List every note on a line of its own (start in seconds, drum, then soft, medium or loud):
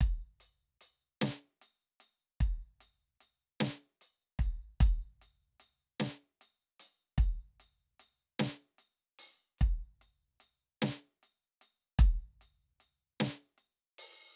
0.01 closed hi-hat medium
0.01 kick medium
0.41 closed hi-hat medium
0.82 closed hi-hat medium
1.22 closed hi-hat medium
1.22 snare loud
1.62 closed hi-hat medium
2.01 closed hi-hat medium
2.41 kick medium
2.41 closed hi-hat medium
2.81 closed hi-hat medium
3.21 closed hi-hat medium
3.61 closed hi-hat medium
3.61 snare loud
3.77 snare soft
4.02 closed hi-hat medium
4.40 kick medium
4.40 closed hi-hat medium
4.81 closed hi-hat medium
4.81 kick loud
5.23 closed hi-hat medium
5.61 closed hi-hat medium
6.01 snare loud
6.01 closed hi-hat medium
6.42 closed hi-hat medium
6.80 closed hi-hat medium
7.19 kick loud
7.19 closed hi-hat medium
7.61 closed hi-hat medium
8.01 closed hi-hat medium
8.40 closed hi-hat medium
8.40 snare loud
8.79 closed hi-hat medium
9.20 percussion loud
9.59 kick medium
9.59 hi-hat pedal soft
9.63 closed hi-hat soft
10.02 closed hi-hat soft
10.41 closed hi-hat medium
10.83 snare loud
10.83 closed hi-hat medium
11.24 closed hi-hat medium
11.62 closed hi-hat medium
12.00 kick loud
12.00 closed hi-hat medium
12.42 closed hi-hat medium
12.81 closed hi-hat medium
13.21 closed hi-hat medium
13.21 snare loud
13.59 closed hi-hat soft
13.99 percussion loud